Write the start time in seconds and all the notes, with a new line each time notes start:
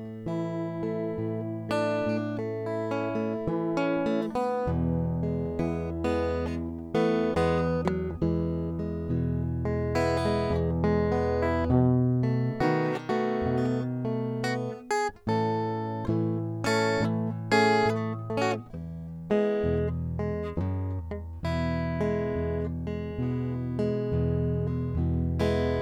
0.00 A3
0.28 E3 E4
0.84 A3
1.20 A2
1.72 A3 D4
2.08 A2
2.38 A3 C#4
2.68 E4
2.93 C#4
3.17 A3
3.49 E3
3.78 C#4
4.08 A3
4.32 D3
4.37 B3
4.69 E2 B2
4.81 E3
5.25 G#3
5.58 E3 B3 E4
6.06 G#3 B3
6.47 B3
6.96 E3 A3 B3
7.30 G#3
7.38 E2 E3 B3
7.87 F#3
8.23 E2 E3 G#3
8.81 G#3
9.11 B2 E3
9.67 G#3
9.96 B3 E4
10.18 B3
10.27 G#3
10.53 E2 B2
10.85 G#3
11.09 B3
11.44 E4
11.72 B2
12.25 A3
12.62 D#3 B3 F#4
13.08 A3 B3 F#4
13.48 B2
13.59 B3
14.06 A3
14.40 F#4
14.45 B3
14.92 G#4
15.29 E3 A3 C#4 A4
15.49 A3
16.10 E3 A3
16.66 A3 C#4 A4
17.01 E3 A3
17.53 A3 C#4 G#4
17.86 E3 A3
18.32 A3
18.39 C#4
18.43 F#4
18.76 E2 B3 E4
19.32 G#3 B3 E4
19.66 E2 B2
20.20 G#3
20.59 F#2
21.01 E2
21.13 G#3
21.45 E2 B2 B3 E4
22.02 G#3
22.30 B2
22.38 E2
22.88 G#3
23.21 B2 E3 B3 E4
23.80 G#3
24.07 B2
24.14 E2
24.70 G#3
24.97 E2 B2 E3
25.08 G#3
25.41 G#3 B3 E4